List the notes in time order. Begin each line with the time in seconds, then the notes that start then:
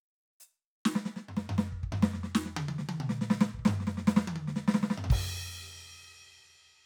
0.41 hi-hat pedal
0.86 snare
0.96 snare
1.17 snare
1.29 floor tom
1.37 snare
1.50 floor tom
1.59 snare
1.73 kick
1.84 kick
1.93 floor tom
2.03 snare
2.14 snare
2.24 snare
2.35 snare
2.46 snare
2.57 high tom
2.69 high tom
2.79 snare
2.89 high tom
3.01 mid tom
3.10 snare
3.22 snare
3.31 snare
3.41 snare
3.55 kick
3.60 kick
3.66 snare, floor tom, hi-hat pedal
3.81 snare
3.88 snare
3.98 snare
4.08 snare, hi-hat pedal
4.17 snare
4.28 high tom
4.36 high tom
4.48 snare
4.57 snare
4.68 snare
4.75 snare
4.83 snare
4.91 snare
4.98 floor tom
5.05 floor tom
5.11 kick, crash